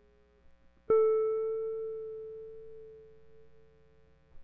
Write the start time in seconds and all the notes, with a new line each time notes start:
0.90 A4